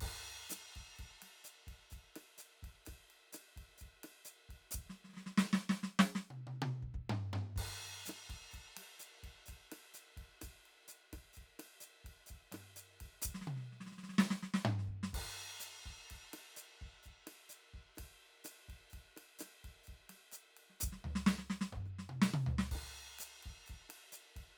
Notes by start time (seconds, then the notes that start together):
0.01 kick, crash
0.50 cross-stick, snare, hi-hat pedal, ride
0.76 kick, ride
0.96 kick, hi-hat pedal, ride
1.04 kick
1.22 snare, ride
1.44 hi-hat pedal, ride
1.67 kick, ride
1.90 kick, hi-hat pedal, ride
2.16 cross-stick, snare, ride
2.38 hi-hat pedal, ride
2.63 kick, ride
2.86 kick, cross-stick, hi-hat pedal, ride
3.10 ride
3.33 cross-stick, hi-hat pedal, ride
3.57 kick, ride
3.78 kick, hi-hat pedal, ride
4.04 cross-stick, ride
4.25 hi-hat pedal, ride
4.49 kick, ride
4.71 kick, hi-hat pedal, ride
4.80 kick
4.90 snare
5.05 snare
5.09 snare
5.14 snare
5.17 snare
5.26 snare
5.38 snare
5.53 snare
5.70 snare
5.83 snare
5.99 snare
6.04 cross-stick
6.15 snare
6.31 high tom
6.47 high tom
6.62 high tom
6.83 kick
6.94 kick
7.10 mid tom
7.33 mid tom
7.56 kick, crash
7.66 kick
8.06 cross-stick, snare, hi-hat pedal, ride
8.30 kick, ride
8.35 kick
8.51 kick, hi-hat pedal, ride
8.77 snare, ride
9.00 hi-hat pedal, ride
9.24 kick, ride
9.46 kick, hi-hat pedal, ride
9.72 cross-stick, ride
9.94 hi-hat pedal, ride
10.17 kick, ride
10.41 kick, cross-stick, snare, hi-hat pedal, ride
10.66 ride
10.88 hi-hat pedal, ride
11.13 kick, cross-stick, snare, ride
11.33 kick, hi-hat pedal, ride
11.59 cross-stick, snare, ride
11.81 hi-hat pedal, ride
12.05 kick, ride
12.26 hi-hat pedal, ride
12.31 kick
12.52 cross-stick, snare, mid tom, ride
12.76 hi-hat pedal, ride
13.01 kick, ride
13.22 kick, hi-hat pedal, ride
13.35 snare
13.42 snare
13.48 high tom
13.56 snare
13.60 snare
13.63 snare
13.72 snare
13.81 snare
13.87 snare
13.92 snare
13.98 snare
14.04 snare
14.09 snare
14.14 snare
14.19 snare
14.31 snare
14.43 snare
14.54 snare
14.65 mid tom
14.79 snare
14.88 kick
15.03 snare
15.13 kick, crash
15.19 kick
15.60 hi-hat pedal, ride
15.86 kick
16.11 kick, ride
16.33 cross-stick, snare, ride
16.57 hi-hat pedal
16.81 kick, ride
17.03 kick, hi-hat pedal, ride
17.27 cross-stick, snare, ride
17.50 hi-hat pedal
17.74 kick
17.96 kick, cross-stick, hi-hat pedal, ride
18.45 cross-stick, hi-hat pedal, ride
18.69 kick, ride
18.90 kick, hi-hat pedal, ride
19.17 cross-stick, ride
19.39 cross-stick, snare, hi-hat pedal, ride
19.64 kick, ride
19.84 hi-hat pedal, ride
19.88 kick
20.10 snare, ride
20.32 hi-hat pedal, ride
20.57 ride
20.70 snare
20.81 kick, hi-hat pedal, ride
20.90 kick, snare
21.05 floor tom
21.16 snare
21.27 snare
21.39 snare
21.50 snare
21.61 snare
21.73 kick, mid tom
21.81 kick
21.86 cross-stick
21.99 snare
22.10 high tom
22.22 snare
22.34 high tom
22.47 floor tom
22.59 snare
22.72 kick, cross-stick, crash
22.78 kick
23.19 hi-hat pedal, ride
23.43 kick, ride
23.66 kick, hi-hat pedal, ride
23.75 kick
23.90 cross-stick, ride
24.13 hi-hat pedal, ride
24.36 kick, ride